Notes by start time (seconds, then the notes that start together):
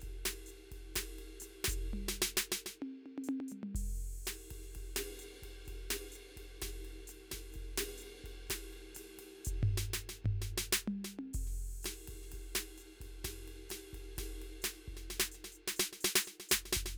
0.01 kick, hi-hat pedal, ride
0.09 kick
0.26 snare, ride
0.47 hi-hat pedal, ride
0.53 snare
0.57 snare
0.72 kick, ride
0.95 kick, snare, hi-hat pedal, ride
1.02 kick
1.19 ride
1.41 hi-hat pedal, ride
1.65 kick, snare, ride
1.70 hi-hat pedal
1.75 kick
1.94 mid tom
2.09 snare
2.22 snare
2.38 snare
2.52 snare
2.67 snare
2.83 high tom
3.06 high tom
3.18 high tom
3.24 hi-hat pedal
3.29 high tom
3.41 high tom
3.49 hi-hat pedal, mid tom
3.64 mid tom
3.75 kick, hi-hat pedal, crash
3.82 kick
4.26 snare, hi-hat pedal, ride
4.51 kick, ride
4.63 snare
4.73 kick, hi-hat pedal, ride
4.82 kick
4.97 snare, ride
5.20 hi-hat pedal, ride
5.33 snare
5.43 kick, ride
5.66 kick, hi-hat pedal, ride
5.73 kick
5.91 snare, ride
6.13 hi-hat pedal, ride
6.37 kick, ride
6.62 kick, snare, ride
6.68 kick
6.81 snare
6.85 ride
6.99 snare
7.04 snare
7.08 hi-hat pedal, ride
7.32 kick, snare, ride
7.51 snare, hi-hat pedal, ride
7.56 kick
7.61 kick
7.78 snare, ride
7.89 snare
7.98 hi-hat pedal
8.03 snare, ride
8.11 snare
8.14 snare
8.16 snare
8.25 kick, ride
8.48 kick, snare, hi-hat pedal, ride
8.73 ride
8.91 snare
8.95 hi-hat pedal, ride
9.18 kick, ride
9.45 kick, hi-hat pedal
9.54 kick
9.63 floor tom
9.69 floor tom
9.78 snare
9.94 snare
10.10 snare
10.25 kick, floor tom
10.31 kick
10.42 snare
10.58 snare
10.73 snare
10.88 mid tom
11.05 snare
11.19 high tom
11.34 kick, hi-hat pedal, crash
11.47 kick, snare
11.84 snare, hi-hat pedal, ride
12.08 kick, ride
12.14 kick
12.24 snare
12.32 kick, hi-hat pedal, ride
12.39 kick
12.56 snare, ride
12.78 hi-hat pedal, ride
12.91 snare
13.01 kick, ride
13.06 kick
13.25 kick, snare, hi-hat pedal, ride
13.31 kick
13.48 ride
13.70 snare, hi-hat pedal, ride
13.94 kick, ride
13.99 kick
14.17 kick, snare, hi-hat pedal, ride
14.24 kick
14.42 ride
14.63 snare, hi-hat pedal, ride
14.74 snare
14.88 kick
14.94 kick, snare
15.11 snare
15.20 snare
15.32 snare, hi-hat pedal
15.45 snare
15.53 hi-hat pedal
15.68 snare
15.77 snare, hi-hat pedal
15.93 snare
16.01 snare, hi-hat pedal
16.16 snare
16.25 snare, hi-hat pedal
16.40 snare
16.50 kick, snare, hi-hat pedal
16.66 snare
16.73 kick, snare, hi-hat pedal
16.83 kick, snare
16.94 hi-hat pedal